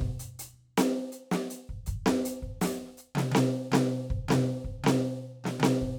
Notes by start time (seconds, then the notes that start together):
0.01 kick
0.20 closed hi-hat
0.39 closed hi-hat
0.78 closed hi-hat, snare
0.97 closed hi-hat
1.03 snare
1.12 closed hi-hat
1.32 snare, closed hi-hat
1.50 closed hi-hat
1.68 kick, closed hi-hat
1.86 closed hi-hat, kick
2.06 snare
2.25 closed hi-hat
2.42 kick, closed hi-hat
2.61 open hi-hat, snare
2.85 snare
2.98 hi-hat pedal
3.15 snare, high tom
3.32 snare, hi-hat pedal, high tom
3.72 snare, hi-hat pedal, high tom
4.10 kick
4.29 snare, high tom
4.32 high tom
4.65 kick
4.84 snare, high tom
5.44 snare, high tom
5.60 snare, high tom
5.82 kick